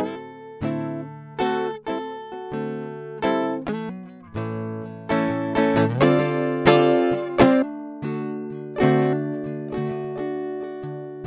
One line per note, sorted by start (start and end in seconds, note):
0.01 0.12 B3
0.01 0.19 E4
0.01 0.65 A4
0.19 0.39 A3
0.63 0.69 A2
0.63 1.80 D3
0.63 1.43 A3
0.63 1.11 C4
0.67 1.10 E4
0.67 1.37 A4
1.41 1.80 A3
1.41 1.76 C4
1.41 1.77 F#4
1.41 1.83 A4
1.89 2.25 C4
1.89 2.04 E4
1.89 3.23 A4
1.93 2.04 G3
2.06 2.19 A3
2.34 3.23 F#4
2.54 3.43 D3
2.54 3.24 A3
2.54 2.91 C4
3.25 3.47 G3
3.25 3.66 C4
3.25 3.65 E4
3.25 3.68 A4
3.44 3.58 D3
3.71 3.89 E3
3.71 3.91 A3
3.91 4.04 F#3
3.91 4.25 B3
4.06 4.25 F#3
4.27 4.33 E3
4.37 4.84 A2
4.37 4.84 E3
4.37 4.88 A3
4.37 4.90 C#4
4.84 5.30 A2
4.84 5.12 E3
4.84 5.09 A3
5.11 5.31 E3
5.11 5.30 A3
5.11 5.59 C#4
5.11 5.57 E4
5.11 5.55 A4
5.30 5.64 A2
5.30 5.60 E3
5.30 5.59 A3
5.58 5.78 E3
5.58 5.80 A3
5.58 5.79 C#4
5.58 5.88 E4
5.58 6.00 A4
5.78 6.01 A2
5.78 5.90 E3
5.78 5.91 A3
5.78 5.93 C#4
6.01 6.68 D3
6.01 6.21 F4
6.01 6.20 A4
6.01 6.70 D5
6.06 6.19 G3
6.06 6.21 C4
6.20 6.66 G3
6.20 6.68 C4
6.20 6.69 F4
6.20 6.68 A4
6.68 7.00 D3
6.68 7.13 G3
6.68 7.15 C4
6.68 7.15 F4
6.68 7.18 A4
6.68 7.33 D5
7.13 7.43 D3
7.13 7.40 G3
7.13 7.42 C4
7.13 7.41 F4
7.41 7.57 D3
7.41 7.54 G3
7.41 7.64 C4
7.41 7.53 F4
7.41 7.53 A4
7.41 7.68 D5
7.64 7.96 A3
7.64 8.05 D4
8.04 8.53 D3
8.04 8.53 A3
8.04 8.55 D4
8.04 8.82 F#4
8.53 8.85 D3
8.53 8.84 A3
8.53 8.79 D4
8.79 9.19 F#4
8.79 9.70 D5
8.84 9.35 D3
8.84 9.48 A3
8.84 9.15 C4
9.15 9.55 D4
9.35 9.44 D3
9.47 9.77 D3
9.47 9.78 A3
9.55 9.76 D4
9.71 10.16 D5
9.75 11.28 A3
9.75 9.88 C4
9.75 10.20 F#4
9.80 9.90 D3
9.94 10.84 D3
10.18 11.28 D4
10.18 10.66 F#4
10.18 10.62 D5
10.63 11.28 F#4
10.63 11.28 D5
10.86 11.28 D3